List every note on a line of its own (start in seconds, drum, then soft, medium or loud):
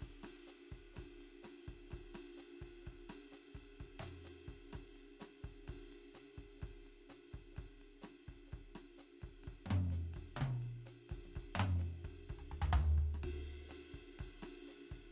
0.01 kick soft
0.01 ride soft
0.08 kick soft
0.23 cross-stick soft
0.23 snare soft
0.23 ride medium
0.47 hi-hat pedal medium
0.72 kick soft
0.72 ride soft
0.77 kick soft
0.94 cross-stick soft
0.94 hi-hat pedal soft
0.94 ride medium
0.98 kick soft
1.04 kick soft
1.21 ride soft
1.43 cross-stick soft
1.43 hi-hat pedal medium
1.43 ride medium
1.68 kick soft
1.68 ride soft
1.73 kick soft
1.87 cross-stick soft
1.87 hi-hat pedal soft
1.92 kick soft
1.92 ride medium
1.99 kick soft
2.15 cross-stick soft
2.15 ride medium
2.38 hi-hat pedal medium
2.38 ride soft
2.62 kick soft
2.62 ride medium
2.67 kick soft
2.82 hi-hat pedal soft
2.87 kick soft
2.87 ride soft
2.93 kick soft
3.09 cross-stick soft
3.09 snare soft
3.09 ride medium
3.32 hi-hat pedal medium
3.32 ride soft
3.55 kick soft
3.55 ride medium
3.60 kick soft
3.80 kick soft
3.80 ride medium
3.86 kick soft
4.00 snare soft
4.00 mid tom medium
4.00 ride medium
4.25 hi-hat pedal medium
4.25 ride medium
4.48 kick soft
4.48 ride soft
4.53 kick soft
4.70 cross-stick soft
4.70 snare soft
4.70 hi-hat pedal soft
4.70 ride medium
4.75 kick soft
4.80 kick soft
4.96 ride soft
5.20 cross-stick soft
5.20 snare soft
5.20 hi-hat pedal medium
5.20 ride medium
5.40 kick soft
5.40 hi-hat pedal soft
5.45 ride soft
5.50 kick soft
5.64 hi-hat pedal soft
5.64 ride medium
5.69 kick soft
5.75 kick soft
5.93 ride soft
6.14 snare soft
6.14 hi-hat pedal medium
6.14 ride medium
6.35 kick soft
6.35 hi-hat pedal soft
6.35 ride soft
6.43 kick soft
6.58 hi-hat pedal soft
6.62 kick soft
6.62 ride medium
6.69 kick soft
6.87 ride soft
7.09 snare soft
7.09 hi-hat pedal medium
7.09 ride medium
7.31 kick soft
7.31 hi-hat pedal soft
7.31 ride soft
7.39 kick soft
7.52 hi-hat pedal soft
7.56 kick soft
7.56 snare soft
7.56 ride medium
7.64 kick soft
7.82 ride soft
8.02 cross-stick soft
8.02 snare soft
8.02 hi-hat pedal medium
8.02 ride medium
8.28 kick soft
8.28 ride soft
8.33 kick soft
8.47 hi-hat pedal soft
8.53 kick soft
8.53 ride soft
8.59 kick soft
8.75 cross-stick soft
8.75 snare soft
8.75 ride medium
8.98 hi-hat pedal medium
8.98 ride soft
9.21 kick soft
9.21 hi-hat pedal soft
9.21 ride soft
9.29 kick soft
9.42 hi-hat pedal soft
9.42 ride medium
9.47 kick soft
9.53 kick soft
9.66 mid tom medium
9.71 mid tom loud
9.71 ride soft
9.91 hi-hat pedal medium
9.91 ride soft
10.14 kick soft
10.14 ride medium
10.22 kick soft
10.37 high tom medium
10.41 kick soft
10.41 high tom loud
10.47 kick soft
10.62 ride bell soft
10.86 hi-hat pedal medium
10.86 ride medium
11.09 kick soft
11.09 hi-hat pedal soft
11.09 ride medium
11.18 kick soft
11.25 mid tom soft
11.36 kick soft
11.36 ride medium
11.43 kick soft
11.56 mid tom medium
11.60 mid tom loud
11.69 mid tom soft
11.79 hi-hat pedal medium
11.79 ride soft
12.01 kick soft
12.01 hi-hat pedal soft
12.05 ride medium
12.10 kick soft
12.30 kick soft
12.30 ride medium
12.36 kick soft
12.36 floor tom soft
12.52 floor tom medium
12.62 floor tom loud
12.73 hi-hat pedal medium
12.73 floor tom loud
12.98 kick soft
13.03 kick soft
13.14 cross-stick soft
13.14 hi-hat pedal soft
13.24 kick soft
13.24 ride loud
13.30 kick soft
13.69 snare soft
13.69 hi-hat pedal medium
13.69 ride medium
13.94 kick soft
13.99 kick soft
14.16 hi-hat pedal soft
14.16 ride medium
14.20 kick soft
14.27 kick soft
14.42 cross-stick soft
14.42 snare soft
14.42 ride medium
14.68 hi-hat pedal medium
14.92 kick soft
14.92 ride soft
14.97 kick soft